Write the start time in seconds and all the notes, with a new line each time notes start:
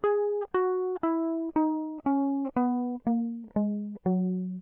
0.05 G#4
0.55 F#4
1.04 E4
1.57 D#4
2.07 C#4
2.58 B3
3.08 A#3
3.57 G#3
4.07 F#3